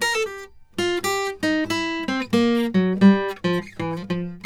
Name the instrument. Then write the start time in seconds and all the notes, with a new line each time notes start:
acoustic guitar
0.03 A#4
0.14 A4
0.25 G4
0.80 F4
1.06 G4
1.44 D#4
1.72 E4
2.10 C4
2.34 A#3
2.76 F#3
3.03 G3
3.46 F3
3.81 E3
4.12 F3